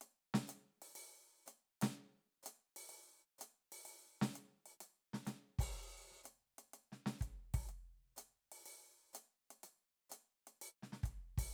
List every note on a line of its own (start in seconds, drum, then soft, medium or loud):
0.01 closed hi-hat soft
0.34 snare medium
0.47 closed hi-hat medium
0.47 hi-hat pedal soft
0.82 open hi-hat medium
0.95 open hi-hat medium
1.46 closed hi-hat soft
1.46 hi-hat pedal soft
1.81 snare medium
1.81 open hi-hat medium
2.43 closed hi-hat medium
2.43 hi-hat pedal soft
2.76 open hi-hat medium
2.89 open hi-hat soft
3.38 closed hi-hat medium
3.38 hi-hat pedal soft
3.72 open hi-hat medium
3.85 open hi-hat soft
4.21 snare medium
4.33 closed hi-hat soft
4.33 hi-hat pedal soft
4.66 open hi-hat soft
4.80 open hi-hat medium
5.13 snare soft
5.25 snare soft
5.25 closed hi-hat soft
5.25 hi-hat pedal soft
5.59 open hi-hat medium
5.59 kick soft
6.11 snare soft
6.23 closed hi-hat soft
6.23 hi-hat pedal soft
6.58 closed hi-hat soft
6.73 open hi-hat soft
6.92 snare soft
7.06 snare medium
7.18 kick soft
7.18 closed hi-hat soft
7.18 hi-hat pedal soft
7.54 kick soft
7.54 open hi-hat soft
7.69 open hi-hat soft
8.16 closed hi-hat medium
8.16 hi-hat pedal soft
8.52 open hi-hat soft
8.66 open hi-hat medium
9.13 closed hi-hat medium
9.13 hi-hat pedal soft
9.50 closed hi-hat soft
9.63 open hi-hat medium
10.09 closed hi-hat medium
10.09 hi-hat pedal soft
10.47 closed hi-hat soft
10.61 open hi-hat medium
10.82 snare soft
10.92 snare soft
11.03 kick soft
11.03 closed hi-hat soft
11.03 hi-hat pedal soft
11.38 kick soft
11.38 open hi-hat medium